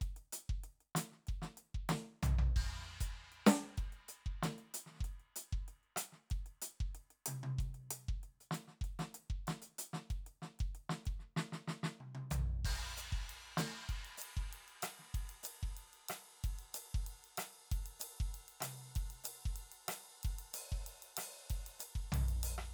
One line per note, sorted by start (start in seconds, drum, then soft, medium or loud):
0.01 kick medium
0.01 closed hi-hat soft
0.16 closed hi-hat soft
0.32 closed hi-hat medium
0.49 kick medium
0.64 closed hi-hat soft
0.80 closed hi-hat soft
0.95 closed hi-hat loud
0.95 snare medium
1.12 snare soft
1.27 kick soft
1.27 closed hi-hat soft
1.42 snare soft
1.42 closed hi-hat soft
1.57 closed hi-hat medium
1.74 kick soft
1.89 snare medium
1.89 closed hi-hat medium
2.22 floor tom loud
2.22 hi-hat pedal medium
2.38 floor tom medium
2.56 kick medium
2.56 ride medium
2.83 snare soft
3.00 closed hi-hat medium
3.00 kick medium
3.32 closed hi-hat soft
3.46 open hi-hat medium
3.46 snare loud
3.62 snare soft
3.77 kick medium
3.77 closed hi-hat soft
3.92 closed hi-hat soft
4.08 closed hi-hat medium
4.26 kick soft
4.42 snare medium
4.42 closed hi-hat medium
4.58 closed hi-hat soft
4.74 closed hi-hat loud
4.86 snare soft
4.90 snare soft
4.94 snare soft
4.97 kick soft
4.97 snare soft
5.04 closed hi-hat soft
5.19 closed hi-hat soft
5.36 closed hi-hat medium
5.52 kick medium
5.68 closed hi-hat soft
5.83 closed hi-hat soft
5.96 closed hi-hat loud
5.96 cross-stick medium
6.12 snare soft
6.30 kick medium
6.30 closed hi-hat soft
6.46 closed hi-hat soft
6.62 closed hi-hat loud
6.80 kick medium
6.95 closed hi-hat soft
7.10 closed hi-hat soft
7.26 closed hi-hat loud
7.26 high tom medium
7.43 high tom medium
7.58 kick medium
7.58 closed hi-hat soft
7.74 closed hi-hat soft
7.91 closed hi-hat loud
8.08 kick medium
8.23 closed hi-hat soft
8.40 closed hi-hat soft
8.51 snare medium
8.51 closed hi-hat medium
8.67 snare soft
8.81 kick soft
8.81 closed hi-hat soft
8.99 snare medium
8.99 closed hi-hat soft
9.14 closed hi-hat medium
9.30 kick soft
9.47 snare medium
9.47 closed hi-hat medium
9.62 closed hi-hat soft
9.78 closed hi-hat loud
9.93 snare medium
10.10 kick soft
10.10 closed hi-hat soft
10.26 closed hi-hat soft
10.42 snare soft
10.59 kick medium
10.59 closed hi-hat soft
10.75 closed hi-hat soft
10.89 snare medium
11.05 kick medium
11.05 closed hi-hat soft
11.19 snare soft
11.36 snare medium
11.52 snare soft
11.67 snare medium
11.83 snare medium
12.00 high tom soft
12.15 high tom medium
12.31 floor tom loud
12.31 hi-hat pedal medium
12.64 kick medium
12.64 crash medium
12.64 ride medium
12.97 hi-hat pedal medium
12.97 ride soft
13.12 kick medium
13.29 ride medium
13.57 snare medium
13.57 hi-hat pedal medium
13.57 ride medium
13.89 kick soft
13.89 ride soft
14.05 ride soft
14.17 hi-hat pedal medium
14.22 ride medium
14.37 kick medium
14.53 ride medium
14.68 ride soft
14.82 cross-stick medium
14.82 hi-hat pedal loud
14.82 ride loud
14.99 snare soft
15.14 kick medium
15.14 ride medium
15.29 ride medium
15.43 hi-hat pedal loud
15.43 ride loud
15.63 kick soft
15.77 ride medium
15.93 ride soft
16.09 cross-stick medium
16.09 hi-hat pedal medium
16.09 ride loud
16.44 kick medium
16.44 ride medium
16.59 ride soft
16.74 hi-hat pedal loud
16.74 ride loud
16.94 kick medium
17.06 ride medium
17.24 ride soft
17.37 cross-stick medium
17.37 hi-hat pedal loud
17.37 ride loud
17.71 kick medium
17.71 ride medium
17.86 ride medium
17.99 hi-hat pedal medium
17.99 ride loud
18.20 kick medium
18.34 ride medium
18.48 ride medium
18.60 cross-stick medium
18.60 hi-hat pedal loud
18.60 high tom medium
18.60 ride loud
18.95 kick medium
18.95 ride medium
19.10 ride medium
19.24 hi-hat pedal medium
19.24 ride loud
19.45 kick medium
19.56 ride medium
19.72 ride medium
19.88 cross-stick medium
19.88 hi-hat pedal medium
19.88 ride loud
20.23 kick medium
20.23 ride medium
20.39 ride medium
20.53 hi-hat pedal medium
20.53 ride loud
20.72 kick medium
20.86 ride medium
21.02 ride medium
21.17 cross-stick medium
21.17 hi-hat pedal medium
21.17 ride loud
21.50 kick medium
21.50 ride medium
21.66 ride medium
21.79 hi-hat pedal medium
21.79 ride medium
21.95 kick soft
22.12 floor tom loud
22.12 ride medium
22.28 ride medium
22.43 hi-hat pedal loud
22.43 ride loud
22.58 cross-stick medium